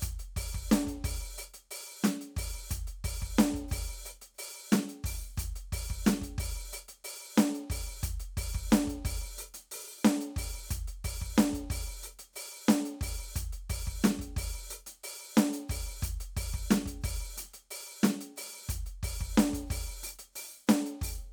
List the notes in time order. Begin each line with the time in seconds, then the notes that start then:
0.01 closed hi-hat, kick, hi-hat pedal
0.19 closed hi-hat
0.37 open hi-hat, kick
0.55 kick
0.69 closed hi-hat, snare, hi-hat pedal
0.87 closed hi-hat, kick
1.04 open hi-hat, kick
1.38 open hi-hat, hi-hat pedal
1.54 closed hi-hat
1.71 open hi-hat
2.03 closed hi-hat, snare, hi-hat pedal
2.21 closed hi-hat
2.36 open hi-hat, kick, hi-hat pedal
2.69 closed hi-hat, kick, hi-hat pedal
2.87 closed hi-hat
3.04 open hi-hat, kick
3.22 kick
3.38 closed hi-hat, snare, hi-hat pedal
3.54 closed hi-hat, kick
3.68 open hi-hat, kick, hi-hat pedal
4.05 open hi-hat, hi-hat pedal
4.22 closed hi-hat
4.34 hi-hat pedal
4.38 open hi-hat
4.71 closed hi-hat, snare, hi-hat pedal
4.89 closed hi-hat
5.03 open hi-hat, kick, hi-hat pedal
5.37 closed hi-hat, kick, hi-hat pedal
5.56 closed hi-hat
5.73 open hi-hat, kick
5.90 kick
6.05 closed hi-hat, snare, hi-hat pedal
6.22 closed hi-hat, kick
6.38 open hi-hat, kick
6.73 open hi-hat, hi-hat pedal
6.88 closed hi-hat
7.04 open hi-hat
7.36 closed hi-hat, snare, hi-hat pedal
7.55 closed hi-hat
7.70 open hi-hat, kick
8.02 closed hi-hat, kick, hi-hat pedal
8.20 closed hi-hat
8.37 open hi-hat, kick
8.55 kick
8.70 closed hi-hat, snare, hi-hat pedal
8.87 closed hi-hat, kick
9.05 open hi-hat, kick
9.38 open hi-hat, hi-hat pedal
9.54 closed hi-hat
9.72 open hi-hat
10.04 open hi-hat, snare, hi-hat pedal
10.21 closed hi-hat
10.36 open hi-hat, kick
10.69 closed hi-hat, kick, hi-hat pedal
10.88 closed hi-hat
11.04 open hi-hat, kick
11.22 kick
11.36 closed hi-hat, snare, hi-hat pedal
11.53 closed hi-hat, kick
11.70 open hi-hat, kick
12.03 open hi-hat, hi-hat pedal
12.19 closed hi-hat
12.33 open hi-hat, hi-hat pedal
12.68 closed hi-hat, snare, hi-hat pedal
12.85 closed hi-hat
13.01 open hi-hat, kick
13.35 closed hi-hat, kick, hi-hat pedal
13.53 closed hi-hat
13.70 open hi-hat, kick
13.87 kick
14.02 closed hi-hat, snare, hi-hat pedal
14.19 closed hi-hat, kick
14.37 open hi-hat, kick
14.70 open hi-hat, hi-hat pedal
14.87 closed hi-hat
15.04 open hi-hat
15.36 closed hi-hat, snare, hi-hat pedal
15.53 closed hi-hat
15.69 open hi-hat, kick, hi-hat pedal
16.02 closed hi-hat, kick, hi-hat pedal
16.20 closed hi-hat
16.37 open hi-hat, kick
16.54 kick
16.70 closed hi-hat, snare, hi-hat pedal
16.86 closed hi-hat, kick
17.01 open hi-hat, kick, hi-hat pedal
17.37 closed hi-hat, hi-hat pedal
17.54 closed hi-hat
17.71 open hi-hat
18.02 closed hi-hat, snare, hi-hat pedal
18.21 closed hi-hat
18.36 open hi-hat, hi-hat pedal
18.69 closed hi-hat, kick, hi-hat pedal
18.86 closed hi-hat
19.03 open hi-hat, kick
19.21 kick
19.35 closed hi-hat, snare, hi-hat pedal
19.53 closed hi-hat, kick
19.66 hi-hat pedal
19.70 open hi-hat, kick
20.03 open hi-hat, hi-hat pedal
20.19 closed hi-hat
20.33 open hi-hat, hi-hat pedal
20.67 closed hi-hat, snare, hi-hat pedal
20.86 closed hi-hat
21.01 open hi-hat, kick, hi-hat pedal